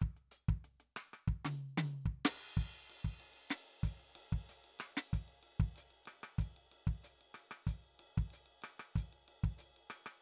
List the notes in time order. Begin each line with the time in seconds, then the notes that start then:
0.01 kick, closed hi-hat
0.17 closed hi-hat
0.32 closed hi-hat
0.49 kick
0.65 closed hi-hat
0.80 closed hi-hat
0.97 cross-stick, open hi-hat
1.14 cross-stick
1.28 kick, hi-hat pedal
1.45 snare, high tom
1.78 snare, high tom
2.06 kick
2.25 snare, crash
2.57 kick, ride
2.74 ride
2.90 ride
3.05 kick
3.20 ride
3.34 ride
3.50 snare, ride
3.84 kick, hi-hat pedal, ride
4.00 ride
4.16 ride
4.33 kick
4.49 hi-hat pedal, ride
4.64 ride
4.79 cross-stick, ride
4.97 snare
5.13 kick, hi-hat pedal, ride
5.28 ride
5.43 ride
5.60 kick
5.76 hi-hat pedal, ride
5.91 ride
6.06 cross-stick, ride
6.24 cross-stick
6.39 kick, hi-hat pedal, ride
6.57 ride
6.72 ride
6.87 kick
7.04 hi-hat pedal, ride
7.21 ride
7.35 cross-stick, ride
7.51 cross-stick
7.67 kick, hi-hat pedal, ride
7.84 ride
8.00 ride
8.18 kick
8.31 hi-hat pedal, ride
8.46 ride
8.62 cross-stick, ride
8.80 cross-stick
8.96 kick, hi-hat pedal, ride
9.13 ride
9.28 ride
9.44 kick
9.59 hi-hat pedal, ride
9.77 ride
9.90 cross-stick, ride
10.06 cross-stick